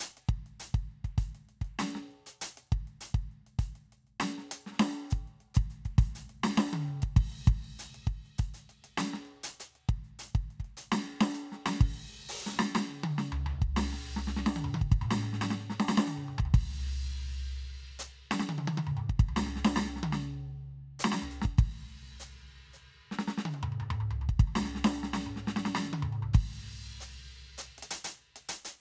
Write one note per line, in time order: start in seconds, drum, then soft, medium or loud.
0.01 closed hi-hat loud
0.18 closed hi-hat soft
0.29 kick medium
0.29 closed hi-hat soft
0.47 closed hi-hat soft
0.60 closed hi-hat loud
0.75 kick medium
0.75 closed hi-hat medium
0.92 closed hi-hat soft
1.05 kick soft
1.05 closed hi-hat soft
1.19 closed hi-hat loud
1.19 kick medium
1.35 closed hi-hat soft
1.50 closed hi-hat soft
1.62 kick soft
1.62 closed hi-hat soft
1.80 closed hi-hat loud
1.80 snare loud
1.96 snare soft
2.12 closed hi-hat soft
2.27 closed hi-hat medium
2.42 closed hi-hat loud
2.58 closed hi-hat soft
2.73 kick medium
2.73 closed hi-hat soft
2.88 closed hi-hat soft
3.02 closed hi-hat loud
3.15 kick medium
3.15 closed hi-hat soft
3.32 closed hi-hat soft
3.47 closed hi-hat soft
3.60 closed hi-hat loud
3.60 kick medium
3.76 closed hi-hat soft
3.93 closed hi-hat soft
4.08 closed hi-hat soft
4.21 closed hi-hat loud
4.21 snare loud
4.39 snare soft
4.52 closed hi-hat loud
4.67 snare soft
4.73 snare soft
4.77 snare soft
4.80 snare loud
5.11 closed hi-hat loud
5.11 kick medium
5.28 closed hi-hat soft
5.41 closed hi-hat soft
5.55 closed hi-hat loud
5.55 kick loud
5.71 closed hi-hat medium
5.86 kick soft
5.86 closed hi-hat soft
5.99 closed hi-hat loud
5.99 kick loud
6.16 closed hi-hat loud
6.30 closed hi-hat soft
6.44 snare loud
6.58 snare loud
6.74 high tom loud
6.82 hi-hat pedal soft
6.88 mid tom soft
7.03 kick medium
7.03 closed hi-hat medium
7.17 kick loud
7.17 crash loud
7.33 closed hi-hat soft
7.48 kick loud
7.48 closed hi-hat soft
7.65 closed hi-hat soft
7.80 closed hi-hat loud
7.95 closed hi-hat soft
8.08 kick medium
8.08 closed hi-hat soft
8.26 closed hi-hat soft
8.39 closed hi-hat loud
8.39 kick medium
8.55 closed hi-hat loud
8.70 closed hi-hat medium
8.85 closed hi-hat medium
8.98 closed hi-hat loud
8.98 snare loud
9.14 snare medium
9.26 closed hi-hat soft
9.44 closed hi-hat loud
9.61 closed hi-hat medium
9.76 closed hi-hat soft
9.90 kick medium
9.90 closed hi-hat soft
10.05 closed hi-hat soft
10.20 closed hi-hat loud
10.36 kick medium
10.36 closed hi-hat medium
10.51 closed hi-hat soft
10.61 kick soft
10.65 closed hi-hat soft
10.78 closed hi-hat loud
10.93 snare loud
11.09 closed hi-hat soft
11.21 snare loud
11.35 closed hi-hat loud
11.53 snare soft
11.67 snare loud
11.81 kick loud
11.81 crash loud
12.29 open hi-hat loud
12.47 snare soft
12.52 snare soft
12.52 hi-hat pedal soft
12.56 snare soft
12.60 snare loud
12.76 snare loud
12.90 high tom medium
13.04 high tom loud
13.19 snare medium
13.33 floor tom loud
13.47 floor tom loud
13.62 kick medium
13.77 snare loud
13.77 crash loud
13.94 snare soft
14.17 snare medium
14.28 snare medium
14.37 snare medium
14.47 snare loud
14.52 hi-hat pedal soft
14.57 high tom loud
14.65 mid tom medium
14.75 high tom loud
14.82 kick medium
14.93 kick loud
15.02 mid tom loud
15.12 snare loud
15.24 snare soft
15.34 snare medium
15.42 snare loud
15.51 snare medium
15.61 snare soft
15.71 snare medium
15.81 snare loud
15.89 snare loud
15.98 snare loud
16.06 hi-hat pedal soft
16.06 high tom loud
16.18 mid tom medium
16.29 mid tom soft
16.39 kick medium
16.39 floor tom loud
16.46 floor tom medium
16.55 kick loud
16.55 crash loud
18.00 hi-hat pedal medium
18.32 snare loud
18.40 snare loud
18.50 high tom loud
18.59 high tom medium
18.68 high tom loud
18.78 high tom loud
18.88 mid tom medium
18.98 mid tom medium
19.10 kick soft
19.29 floor tom loud
19.37 snare loud
19.47 snare medium
19.57 snare medium
19.66 snare loud
19.77 snare loud
19.86 snare medium
19.97 snare soft
20.04 high tom loud
20.13 snare loud
21.00 hi-hat pedal loud
21.05 snare loud
21.13 snare loud
21.23 floor tom medium
21.31 closed hi-hat medium
21.43 kick medium
21.43 snare medium
21.59 kick loud
21.59 crash medium
22.21 hi-hat pedal medium
22.74 hi-hat pedal soft
23.12 snare soft
23.20 snare medium
23.28 snare medium
23.46 high tom medium
23.52 hi-hat pedal soft
23.52 high tom medium
23.64 mid tom medium
23.73 mid tom medium
23.81 mid tom medium
23.91 mid tom loud
24.01 floor tom medium
24.12 floor tom medium
24.22 floor tom medium
24.30 kick medium
24.40 kick loud
24.48 floor tom medium
24.56 snare loud
24.66 snare medium
24.76 snare medium
24.85 snare loud
25.04 snare medium
25.14 snare loud
25.27 mid tom medium
25.37 snare soft
25.48 snare medium
25.57 snare medium
25.66 snare medium
25.76 snare loud
25.84 high tom medium
25.94 high tom loud
26.03 mid tom loud
26.23 floor tom medium
26.34 kick loud
26.34 crash loud
27.01 hi-hat pedal medium
27.59 hi-hat pedal medium
27.79 closed hi-hat soft
27.83 closed hi-hat medium
27.91 closed hi-hat loud
28.05 closed hi-hat loud
28.37 closed hi-hat medium
28.50 closed hi-hat loud
28.66 closed hi-hat medium